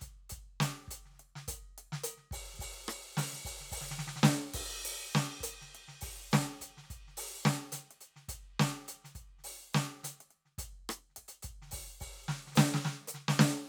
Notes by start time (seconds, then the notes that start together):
0.01 open hi-hat, kick, snare
0.30 closed hi-hat, kick
0.61 closed hi-hat, snare
0.89 closed hi-hat, kick
1.06 snare
1.10 snare
1.14 snare
1.18 snare, closed hi-hat
1.36 snare
1.49 closed hi-hat, kick
1.79 closed hi-hat
1.93 snare
2.04 closed hi-hat
2.18 snare
2.32 open hi-hat, kick
2.54 snare
2.58 open hi-hat, kick, snare
2.89 open hi-hat, cross-stick
3.18 open hi-hat, snare
3.33 snare
3.46 open hi-hat, kick
3.61 snare
3.73 open hi-hat, kick
3.82 snare
3.92 snare
3.99 snare
4.08 snare
4.17 snare
4.24 snare
4.55 kick, hi-hat pedal, crash
4.86 open hi-hat
5.13 snare, hi-hat pedal
5.41 closed hi-hat, kick
5.62 snare, closed hi-hat
5.75 closed hi-hat
5.89 snare
6.02 open hi-hat, kick
6.32 snare, closed hi-hat, hi-hat pedal
6.54 snare
6.61 closed hi-hat, kick
6.78 snare
6.84 snare
6.89 closed hi-hat, kick, snare
7.08 snare
7.18 open hi-hat
7.44 snare, hi-hat pedal
7.73 closed hi-hat, snare
7.92 closed hi-hat
8.02 closed hi-hat
8.17 snare
8.29 closed hi-hat, kick
8.60 snare, closed hi-hat
8.89 closed hi-hat
9.05 closed hi-hat, snare
9.16 closed hi-hat, kick
9.39 snare
9.45 open hi-hat
9.74 snare, hi-hat pedal
10.04 closed hi-hat, snare
10.21 closed hi-hat
10.31 closed hi-hat
10.46 snare
10.59 closed hi-hat, kick
10.90 closed hi-hat, cross-stick
11.10 snare
11.17 kick, closed hi-hat
11.29 closed hi-hat
11.43 closed hi-hat, kick
11.63 snare
11.68 snare
11.71 open hi-hat, kick, snare
11.75 snare
12.01 open hi-hat, kick
12.29 snare
12.48 snare
12.52 snare
12.56 snare, hi-hat pedal
12.58 snare
12.75 snare
12.85 snare
13.04 snare
13.08 hi-hat pedal
13.15 snare
13.29 snare
13.40 snare
13.58 snare